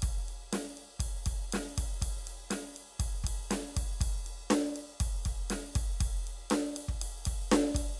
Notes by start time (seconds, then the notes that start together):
0.02 kick, ride
0.28 ride
0.53 snare, ride
0.77 ride
0.99 kick, ride
1.26 kick, ride
1.52 snare, ride
1.77 kick, ride
2.02 kick, ride
2.27 ride
2.50 snare, ride
2.76 ride
2.99 kick, ride
3.24 kick, ride
3.51 snare, ride
3.76 kick, ride
4.01 kick, ride
4.26 ride
4.50 snare, ride
4.76 ride
5.00 kick, ride
5.25 kick, ride
5.50 snare, ride
5.75 kick, ride
6.00 kick, ride
6.27 ride
6.50 snare, ride
6.76 ride
6.88 kick
7.01 ride
7.25 kick, ride
7.52 snare, ride
7.74 kick, ride